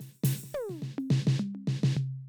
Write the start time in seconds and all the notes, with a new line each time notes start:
0.00 snare, open hi-hat
0.24 open hi-hat, snare
0.43 snare
0.54 high tom
0.69 snare
0.82 snare
0.98 open hi-hat, high tom
1.10 snare
1.27 snare
1.39 mid tom
1.55 high tom
1.67 snare
1.83 snare
1.97 floor tom